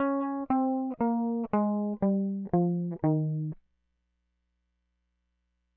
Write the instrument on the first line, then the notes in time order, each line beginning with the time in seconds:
electric guitar
0.00 C#4
0.50 C4
1.01 A#3
1.54 G#3
2.03 G3
2.54 F3
3.04 D#3